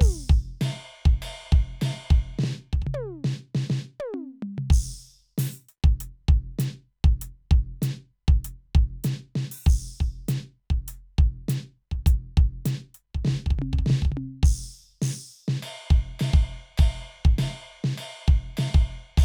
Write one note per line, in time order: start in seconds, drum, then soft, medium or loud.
0.01 kick loud
0.01 crash loud
0.30 kick loud
0.61 snare loud
0.61 ride bell loud
1.06 kick loud
1.22 ride bell loud
1.52 kick loud
1.52 snare soft
1.81 snare loud
1.81 ride bell loud
2.11 kick loud
2.11 snare soft
2.39 snare loud
2.44 snare loud
2.73 kick medium
2.82 kick soft
2.87 floor tom loud
2.94 high tom loud
3.25 snare loud
3.55 snare loud
3.70 snare loud
4.00 high tom loud
4.14 high tom loud
4.43 mid tom loud
4.58 floor tom loud
4.70 kick loud
4.70 crash loud
5.38 open hi-hat loud
5.38 snare loud
5.69 closed hi-hat medium
5.84 kick loud
6.00 closed hi-hat loud
6.29 kick loud
6.59 closed hi-hat loud
6.59 snare loud
7.04 kick loud
7.22 closed hi-hat loud
7.51 kick loud
7.82 closed hi-hat loud
7.82 snare loud
8.28 kick loud
8.45 closed hi-hat loud
8.75 kick loud
9.04 closed hi-hat loud
9.04 snare loud
9.36 snare loud
9.52 open hi-hat loud
9.67 kick loud
9.67 hi-hat pedal soft
9.67 crash loud
10.01 kick medium
10.29 closed hi-hat loud
10.29 snare loud
10.70 kick medium
10.88 open hi-hat loud
11.19 kick loud
11.49 closed hi-hat loud
11.49 snare loud
11.92 kick medium
12.06 closed hi-hat loud
12.06 kick loud
12.37 kick loud
12.66 closed hi-hat loud
12.66 snare loud
12.95 closed hi-hat medium
13.15 kick medium
13.25 snare loud
13.28 kick soft
13.28 snare loud
13.46 kick medium
13.46 snare soft
13.51 kick medium
13.51 snare soft
13.59 floor tom loud
13.59 high tom loud
13.73 kick medium
13.79 kick medium
13.86 snare loud
13.90 snare loud
14.02 kick medium
14.05 kick medium
14.05 snare soft
14.12 kick soft
14.12 floor tom loud
14.17 high tom loud
14.43 kick loud
14.43 crash loud
15.02 snare loud
15.02 crash loud
15.48 snare loud
15.63 ride loud
15.91 kick loud
16.20 snare loud
16.20 ride bell loud
16.34 kick loud
16.78 kick loud
16.78 ride bell loud
17.25 kick loud
17.39 snare loud
17.39 ride bell loud
17.84 snare loud
17.98 ride bell loud
18.28 kick loud
18.57 snare loud
18.57 ride bell loud
18.75 kick loud
19.18 kick loud
19.18 ride bell loud
19.18 crash medium